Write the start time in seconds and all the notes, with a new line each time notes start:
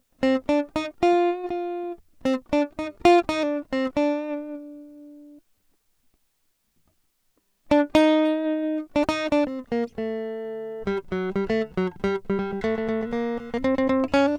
0.24 C4
0.50 D4
0.76 D#4
1.03 F4
1.52 F4
2.26 C4
2.54 D4
2.79 D#4
3.06 F4
3.30 D#4
3.44 D4
3.73 C4
3.97 D4
7.72 D4
7.96 D#4
8.96 D4
9.09 D#4
9.33 D4
9.48 C4
9.73 A#3
9.99 A3
10.88 G3
11.13 F#3
11.37 G3
11.51 A3
11.78 F#3
12.05 G3
12.30 G3
12.40 G3
12.52 G3
12.65 A3
12.79 A3
12.90 A3
13.02 A#3
13.14 A#3
13.39 A#3
13.55 B3
13.65 C4
13.79 C4
13.90 C4
14.14 C#4
14.24 D4